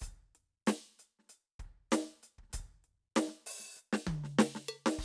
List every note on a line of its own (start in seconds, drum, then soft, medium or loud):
0.01 closed hi-hat medium
0.01 kick soft
0.01 hi-hat pedal medium
0.35 closed hi-hat soft
0.67 open hi-hat medium
0.67 snare loud
0.99 closed hi-hat soft
1.19 snare soft
1.23 snare soft
1.26 closed hi-hat soft
1.26 snare soft
1.60 kick soft
1.60 closed hi-hat soft
1.91 closed hi-hat medium
1.91 snare loud
1.91 hi-hat pedal soft
2.23 closed hi-hat soft
2.39 kick soft
2.43 snare soft
2.50 closed hi-hat medium
2.50 snare soft
2.54 kick soft
2.60 kick soft
2.84 closed hi-hat soft
3.16 closed hi-hat medium
3.16 snare loud
3.28 snare soft
3.47 open hi-hat medium
3.60 snare soft
3.64 snare soft
3.76 hi-hat pedal medium
3.93 snare medium
4.07 kick soft
4.07 high tom loud
4.24 snare soft
4.39 snare loud
4.55 snare soft
4.69 percussion loud
4.86 snare loud
4.94 hi-hat pedal soft
4.99 kick soft
4.99 crash medium